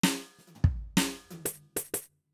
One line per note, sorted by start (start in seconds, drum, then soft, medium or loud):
0.04 snare loud
0.39 snare soft
0.47 high tom medium
0.55 floor tom medium
0.64 kick loud
0.97 snare loud
1.31 high tom loud
1.46 high tom loud
1.77 high tom loud
1.94 high tom loud